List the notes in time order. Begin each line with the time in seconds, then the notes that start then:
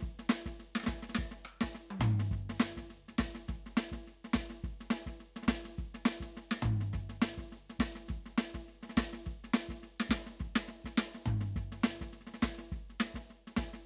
0.01 kick, snare
0.09 kick
0.19 snare
0.30 snare, hi-hat pedal
0.47 kick, snare
0.60 snare
0.76 snare
0.81 cross-stick, snare
0.87 kick, snare, hi-hat pedal
0.94 kick
1.03 snare
1.10 snare
1.15 kick, snare
1.26 kick
1.32 snare
1.46 cross-stick, hi-hat pedal
1.61 kick, snare
1.75 snare
1.91 high tom
2.00 kick, hi-hat pedal, floor tom
2.20 snare
2.32 kick, snare
2.39 kick
2.50 snare
2.58 snare, hi-hat pedal
2.78 kick, snare
2.91 snare
3.09 snare
3.19 kick, snare, hi-hat pedal
3.26 kick
3.29 kick
3.35 snare
3.49 kick, snare
3.56 kick
3.67 snare
3.76 snare, hi-hat pedal
3.92 kick, snare
4.08 snare
4.25 snare
4.34 kick, snare, hi-hat pedal
4.42 kick
4.50 snare
4.64 kick, snare
4.72 kick
4.81 snare
4.91 snare, hi-hat pedal
5.07 kick, snare
5.21 snare
5.37 snare
5.43 snare
5.48 kick, snare, hi-hat pedal
5.66 snare
5.79 kick, snare
5.86 kick
5.95 snare
6.06 snare, hi-hat pedal
6.21 kick, snare
6.37 snare
6.52 snare
6.63 kick, floor tom, hi-hat pedal
6.72 kick
6.75 kick
6.81 snare
6.94 kick, snare
7.01 kick
7.10 snare
7.21 snare, hi-hat pedal
7.38 kick, snare
7.53 snare
7.70 snare
7.80 kick, snare, hi-hat pedal
7.89 kick
7.96 snare
8.09 kick, snare
8.17 kick
8.26 snare
8.38 snare, hi-hat pedal
8.55 kick, snare
8.69 snare
8.75 snare
8.81 snare
8.83 snare
8.90 snare
8.96 kick, snare, hi-hat pedal
9.03 kick, snare
9.06 kick
9.14 snare
9.26 kick, snare
9.44 snare
9.54 snare, hi-hat pedal
9.69 kick, snare
9.83 snare
10.00 snare
10.10 kick, snare, hi-hat pedal
10.27 snare
10.40 kick, snare
10.48 kick
10.56 snare
10.67 snare, hi-hat pedal
10.85 kick, snare
10.98 snare
11.15 snare
11.25 kick, floor tom, hi-hat pedal
11.37 kick, snare
11.57 kick, snare
11.63 kick
11.72 snare
11.81 snare, hi-hat pedal
12.02 kick, snare
12.13 snare
12.21 snare
12.27 snare
12.34 snare
12.41 kick, snare, hi-hat pedal
12.59 snare
12.72 kick, snare
12.78 kick
12.90 snare
13.00 snare, hi-hat pedal
13.15 kick, snare
13.31 snare
13.48 snare
13.57 kick, snare, hi-hat pedal
13.65 kick
13.67 kick
13.74 snare